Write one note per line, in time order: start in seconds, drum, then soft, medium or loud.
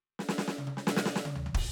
0.19 snare medium
0.29 snare loud
0.38 snare loud
0.48 snare medium
0.56 kick soft
0.56 high tom loud
0.67 high tom medium
0.77 snare medium
0.87 snare loud
0.97 snare loud
1.06 snare loud
1.16 snare loud
1.25 high tom loud
1.36 floor tom medium
1.46 floor tom medium
1.55 kick loud
1.55 crash loud